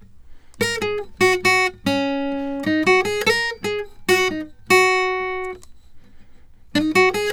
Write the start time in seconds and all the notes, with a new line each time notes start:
0.61 A#4
0.83 G#4
1.21 F#4
1.46 F#4
1.87 C#4
2.64 D#4
2.88 F#4
3.06 G#4
3.27 A#4
3.65 G#4
4.09 F#4
4.32 D#4
4.71 F#4
6.76 D#4
6.96 F#4
7.15 G#4